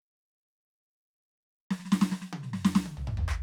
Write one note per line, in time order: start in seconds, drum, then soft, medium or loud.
1.71 snare loud
1.80 snare medium
1.86 snare medium
1.93 snare loud
2.02 snare loud
2.12 snare loud
2.33 high tom loud
2.43 snare soft
2.54 snare medium
2.65 snare loud
2.76 snare loud
2.86 high tom loud
2.98 floor tom loud
3.08 mid tom loud
3.18 floor tom loud
3.29 percussion loud